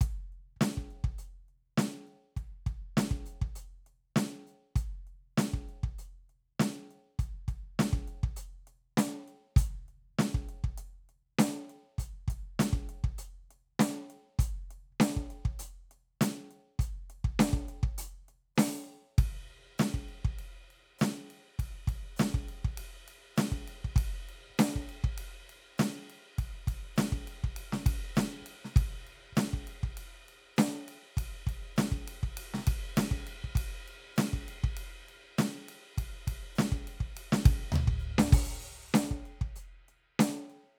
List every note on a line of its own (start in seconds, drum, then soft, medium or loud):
0.01 kick medium
0.01 closed hi-hat medium
0.32 closed hi-hat soft
0.56 kick soft
0.61 closed hi-hat medium
0.61 snare loud
0.77 kick soft
0.91 closed hi-hat soft
1.04 kick medium
1.18 closed hi-hat medium
1.48 closed hi-hat soft
1.78 closed hi-hat medium
1.78 snare loud
2.07 closed hi-hat soft
2.37 kick soft
2.37 closed hi-hat soft
2.66 kick medium
2.66 closed hi-hat soft
2.97 closed hi-hat medium
2.97 snare loud
3.11 kick medium
3.26 closed hi-hat soft
3.42 kick medium
3.55 closed hi-hat medium
3.86 closed hi-hat soft
4.16 closed hi-hat medium
4.16 snare loud
4.47 closed hi-hat soft
4.75 closed hi-hat medium
4.75 kick medium
5.07 closed hi-hat soft
5.38 closed hi-hat medium
5.38 kick soft
5.38 snare loud
5.53 kick medium
5.69 closed hi-hat soft
5.83 kick medium
5.99 closed hi-hat soft
6.29 closed hi-hat soft
6.59 closed hi-hat medium
6.59 snare loud
6.91 closed hi-hat soft
7.19 closed hi-hat medium
7.19 kick medium
7.48 kick medium
7.48 closed hi-hat soft
7.79 closed hi-hat medium
7.79 snare loud
7.93 kick medium
8.07 closed hi-hat soft
8.23 kick medium
8.36 closed hi-hat medium
8.67 closed hi-hat soft
8.97 closed hi-hat loud
8.97 snare loud
9.28 closed hi-hat soft
9.56 closed hi-hat loud
9.56 kick loud
9.88 closed hi-hat soft
10.19 closed hi-hat medium
10.19 snare loud
10.34 kick medium
10.49 closed hi-hat soft
10.64 kick medium
10.78 closed hi-hat medium
11.09 closed hi-hat soft
11.38 closed hi-hat loud
11.38 snare loud
11.70 closed hi-hat soft
11.98 closed hi-hat medium
11.98 kick medium
12.28 kick medium
12.28 closed hi-hat medium
12.59 closed hi-hat loud
12.59 snare loud
12.73 kick medium
12.89 closed hi-hat soft
13.04 kick medium
13.18 closed hi-hat medium
13.51 closed hi-hat soft
13.79 closed hi-hat loud
13.79 snare loud
14.10 closed hi-hat soft
14.39 closed hi-hat loud
14.39 kick medium
14.71 closed hi-hat soft
14.92 kick soft
15.00 closed hi-hat medium
15.00 snare loud
15.17 kick medium
15.30 closed hi-hat soft
15.45 kick medium
15.59 closed hi-hat loud
15.91 closed hi-hat soft
16.21 closed hi-hat loud
16.21 snare loud
16.51 closed hi-hat soft
16.79 closed hi-hat medium
16.79 kick medium
17.10 closed hi-hat soft
17.24 kick medium
17.39 closed hi-hat loud
17.39 snare loud
17.53 kick medium
17.68 closed hi-hat soft
17.83 kick medium
17.98 closed hi-hat loud
18.28 closed hi-hat soft
18.55 open hi-hat loud
18.55 snare loud
18.55 hi-hat pedal soft
19.18 kick loud
19.18 ride loud
19.50 ride soft
19.78 snare loud
19.78 hi-hat pedal soft
19.78 ride loud
19.94 kick medium
20.09 ride soft
20.25 kick medium
20.25 crash soft
20.39 ride medium
20.70 ride soft
20.98 snare loud
20.98 hi-hat pedal medium
20.98 ride medium
21.30 ride soft
21.59 kick medium
21.59 ride medium
21.87 kick medium
21.87 ride medium
22.16 snare loud
22.16 hi-hat pedal medium
22.16 ride medium
22.34 kick medium
22.48 ride medium
22.64 kick medium
22.78 ride loud
23.08 ride medium
23.36 snare loud
23.36 hi-hat pedal soft
23.36 ride loud
23.52 kick medium
23.68 ride medium
23.84 kick medium
23.96 kick loud
23.96 ride loud
24.29 ride soft
24.50 kick soft
24.58 snare loud
24.58 hi-hat pedal soft
24.58 ride loud
24.75 kick medium
24.89 ride medium
25.04 kick medium
25.18 ride loud
25.49 ride medium
25.78 snare loud
25.78 hi-hat pedal medium
25.78 ride loud
26.10 ride medium
26.38 kick medium
26.38 ride medium
26.67 kick medium
26.67 ride medium
26.96 snare loud
26.96 hi-hat pedal medium
26.96 ride loud
27.12 kick medium
27.27 ride medium
27.44 kick medium
27.56 ride loud
27.72 snare medium
27.76 snare soft
27.78 snare soft
27.82 snare soft
27.86 kick medium
27.86 ride loud
28.15 snare loud
28.15 hi-hat pedal medium
28.15 ride medium
28.42 kick soft
28.46 ride medium
28.64 snare soft
28.76 kick loud
28.76 ride loud
29.07 ride soft
29.32 kick soft
29.32 hi-hat pedal soft
29.37 snare loud
29.37 ride loud
29.53 kick medium
29.67 ride medium
29.83 kick medium
29.97 ride medium
30.28 ride soft
30.56 snare loud
30.56 hi-hat pedal medium
30.56 ride loud
30.88 ride medium
31.17 kick medium
31.17 ride loud
31.47 kick medium
31.47 ride medium
31.76 snare loud
31.76 hi-hat pedal medium
31.76 ride loud
31.91 kick medium
32.08 ride loud
32.23 kick medium
32.37 ride loud
32.54 snare medium
32.58 snare medium
32.61 snare soft
32.63 kick medium
32.63 snare soft
32.63 ride loud
32.96 snare loud
32.96 hi-hat pedal medium
32.96 ride loud
33.11 kick medium
33.27 ride medium
33.44 kick soft
33.55 kick medium
33.55 ride loud
33.88 ride medium
34.16 snare loud
34.16 hi-hat pedal medium
34.16 ride loud
34.33 kick medium
34.48 ride medium
34.63 kick medium
34.77 ride loud
35.09 ride soft
35.38 snare loud
35.38 hi-hat pedal medium
35.38 ride loud
35.69 ride medium
35.98 kick medium
35.98 ride loud
36.27 kick medium
36.27 ride loud
36.55 snare loud
36.55 hi-hat pedal medium
36.55 ride medium
36.72 kick medium
36.87 ride medium
37.00 kick medium
37.15 hi-hat pedal soft
37.15 ride loud
37.32 snare loud
37.45 kick loud
37.45 ride loud
37.72 floor tom loud
37.72 hi-hat pedal medium
37.72 high tom loud
37.87 kick medium
37.99 hi-hat pedal soft
38.18 snare loud
38.32 open hi-hat loud
38.32 kick loud
38.88 kick soft
38.94 closed hi-hat medium
38.94 snare loud
38.94 hi-hat pedal soft
39.11 kick medium
39.25 closed hi-hat soft
39.41 kick medium
39.56 closed hi-hat medium
39.88 closed hi-hat soft
40.19 closed hi-hat loud
40.19 snare loud
40.50 closed hi-hat soft